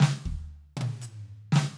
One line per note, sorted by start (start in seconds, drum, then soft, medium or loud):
0.00 snare loud
0.03 snare loud
0.03 percussion medium
0.26 kick medium
0.77 high tom loud
0.81 high tom loud
1.02 percussion loud
1.53 snare loud
1.56 snare loud
1.62 snare medium
1.65 snare soft
1.68 snare soft